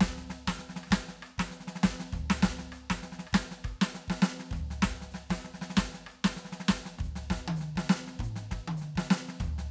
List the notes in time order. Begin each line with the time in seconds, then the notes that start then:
0.01 kick, snare
0.18 snare
0.30 snare, hi-hat pedal
0.47 kick, snare
0.59 snare
0.69 snare
0.76 snare
0.84 cross-stick, snare
0.91 kick, snare, hi-hat pedal
1.09 snare
1.23 cross-stick
1.38 kick, snare
1.51 snare, hi-hat pedal
1.60 snare
1.68 snare
1.76 snare
1.84 kick, snare
2.00 snare
2.13 kick, floor tom, hi-hat pedal
2.19 kick
2.30 snare
2.43 kick, snare
2.51 kick
2.59 snare
2.72 cross-stick, hi-hat pedal
2.90 kick, snare
3.03 snare
3.12 snare
3.19 snare
3.27 cross-stick
3.33 kick, snare, hi-hat pedal
3.51 snare
3.65 kick, cross-stick
3.74 kick
3.82 snare
3.91 hi-hat pedal
3.95 snare
4.08 kick, snare
4.22 snare
4.40 snare
4.51 kick, floor tom, hi-hat pedal
4.71 snare
4.83 kick, snare
4.88 kick, cross-stick
4.94 kick
5.02 snare
5.11 snare, hi-hat pedal
5.30 kick, snare
5.45 snare
5.54 snare
5.62 snare
5.70 snare
5.76 kick, snare, hi-hat pedal
5.84 kick
5.94 snare
6.07 cross-stick
6.25 kick, snare
6.37 snare, hi-hat pedal
6.45 snare
6.53 snare
6.60 snare
6.69 kick, snare
6.86 snare
6.99 kick, floor tom
7.04 kick, hi-hat pedal
7.09 kick
7.16 snare
7.30 kick, snare
7.39 kick
7.48 high tom
7.57 hi-hat pedal
7.61 snare
7.76 kick, snare
7.90 snare
8.08 snare
8.19 kick, mid tom
8.24 kick, hi-hat pedal
8.28 kick
8.36 snare
8.51 kick, snare
8.61 kick
8.68 high tom
8.77 hi-hat pedal
8.82 snare
8.96 kick, snare
9.11 snare
9.29 snare
9.40 kick, floor tom, hi-hat pedal
9.47 kick
9.49 kick
9.58 snare